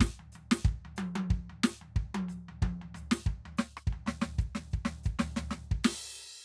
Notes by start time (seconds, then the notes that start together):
0.01 kick, snare
0.20 kick, floor tom
0.33 kick, floor tom, hi-hat pedal
0.52 snare
0.65 kick, floor tom
0.86 floor tom
0.97 hi-hat pedal, high tom
1.16 high tom
1.31 kick, floor tom
1.50 floor tom
1.64 snare, hi-hat pedal
1.82 floor tom
1.97 kick, floor tom
2.15 high tom
2.29 floor tom, hi-hat pedal
2.49 floor tom
2.63 kick, high tom
2.82 floor tom
2.95 floor tom, hi-hat pedal
3.12 snare
3.27 kick, floor tom
3.46 floor tom
3.58 snare, hi-hat pedal
3.78 cross-stick
3.88 kick
3.93 floor tom
4.07 snare, floor tom
4.22 snare, floor tom
4.39 kick, hi-hat pedal
4.56 snare, floor tom
4.72 kick, hi-hat pedal
4.86 snare, floor tom
5.04 kick, hi-hat pedal
5.20 snare, floor tom
5.37 snare, floor tom
5.44 kick
5.51 snare, floor tom
5.72 kick
5.85 snare, crash